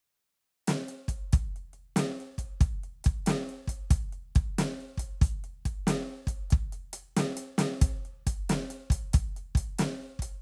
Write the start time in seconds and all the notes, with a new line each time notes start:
0.68 snare, closed hi-hat
0.88 closed hi-hat
1.08 kick, closed hi-hat
1.33 kick, closed hi-hat
1.56 closed hi-hat
1.73 closed hi-hat
1.96 snare, closed hi-hat
2.20 closed hi-hat
2.38 kick, closed hi-hat
2.61 kick, closed hi-hat
2.84 closed hi-hat
3.04 kick, closed hi-hat
3.26 snare, closed hi-hat
3.49 closed hi-hat
3.68 kick, closed hi-hat
3.90 kick, closed hi-hat
4.13 closed hi-hat
4.35 kick, closed hi-hat
4.58 snare, closed hi-hat
4.81 closed hi-hat
4.98 kick, closed hi-hat
5.21 closed hi-hat, kick
5.44 closed hi-hat
5.65 kick, closed hi-hat
5.87 snare, closed hi-hat
6.27 kick, closed hi-hat
6.50 kick, closed hi-hat
6.72 closed hi-hat
6.93 closed hi-hat
7.17 snare, closed hi-hat
7.37 closed hi-hat
7.58 snare, closed hi-hat
7.81 kick, closed hi-hat
8.05 closed hi-hat
8.27 kick, closed hi-hat
8.49 snare, closed hi-hat
8.70 closed hi-hat
8.90 kick, closed hi-hat
9.13 kick, closed hi-hat
9.36 closed hi-hat
9.55 kick, closed hi-hat
9.79 snare, closed hi-hat
10.04 closed hi-hat
10.19 kick, closed hi-hat